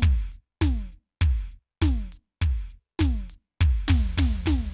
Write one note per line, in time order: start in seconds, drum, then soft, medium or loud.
0.01 kick loud
0.01 hi-hat pedal medium
0.32 closed hi-hat loud
0.61 kick loud
0.61 snare loud
0.92 closed hi-hat medium
1.21 kick loud
1.51 closed hi-hat loud
1.81 kick loud
1.81 snare loud
2.12 closed hi-hat loud
2.41 kick loud
2.41 crash soft
2.70 closed hi-hat loud
2.99 kick loud
2.99 snare loud
3.30 closed hi-hat loud
3.61 kick loud
3.88 kick loud
3.88 snare loud
3.88 floor tom loud
4.18 kick loud
4.18 snare loud
4.18 floor tom loud
4.46 kick medium
4.46 snare loud
4.46 floor tom loud